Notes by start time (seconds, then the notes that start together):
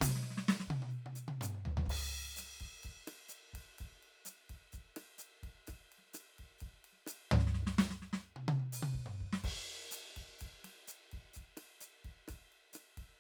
0.01 kick, hi-hat pedal, high tom
0.07 kick, snare
0.16 snare
0.23 snare
0.31 snare
0.38 snare
0.49 snare
0.60 snare
0.68 kick, high tom
0.83 high tom
0.91 hi-hat pedal
1.06 high tom
1.16 hi-hat pedal
1.29 high tom
1.42 hi-hat pedal, mid tom
1.55 mid tom
1.66 floor tom
1.78 floor tom
1.86 kick, floor tom, crash
2.37 snare, hi-hat pedal, ride
2.61 kick, ride
2.66 kick
2.83 kick, hi-hat pedal, ride
2.90 kick
3.07 cross-stick, snare, ride
3.29 hi-hat pedal
3.54 kick, ride
3.78 kick, hi-hat pedal, ride
3.86 kick
4.03 ride
4.26 snare, hi-hat pedal, ride
4.50 kick, ride
4.73 kick, hi-hat pedal, ride
4.79 kick
4.97 cross-stick, snare, ride
5.19 hi-hat pedal, ride
5.43 kick, ride
5.48 kick
5.67 kick, cross-stick, snare, hi-hat pedal, ride
5.74 kick
5.92 ride
5.99 snare
6.04 snare
6.14 cross-stick, snare, hi-hat pedal, ride
6.39 kick, ride
6.59 kick, hi-hat pedal, ride
6.67 kick
6.85 ride
6.93 snare
7.07 cross-stick, snare, hi-hat pedal, ride
7.32 floor tom
7.40 snare
7.47 snare
7.55 snare
7.63 cross-stick
7.67 snare
7.79 kick, snare
7.91 snare
8.00 kick, snare
8.13 snare
8.37 high tom
8.49 high tom
8.60 high tom
8.73 hi-hat pedal, high tom
8.83 high tom
8.94 kick
9.00 kick
9.06 mid tom
9.21 kick
9.26 kick
9.33 snare
9.44 kick, ride
9.50 kick
9.92 hi-hat pedal, ride
10.10 cross-stick
10.17 kick, ride
10.22 kick
10.39 kick, hi-hat pedal, ride
10.47 kick
10.64 snare, ride
10.88 hi-hat pedal, ride
11.12 kick, ride
11.19 kick
11.34 kick, hi-hat pedal, ride
11.42 kick
11.57 cross-stick, ride
11.81 hi-hat pedal, ride
12.05 kick, ride
12.10 kick
12.28 kick, cross-stick, snare, hi-hat pedal, ride
12.35 kick
12.52 ride
12.74 cross-stick, hi-hat pedal, ride
12.98 kick, ride
13.03 kick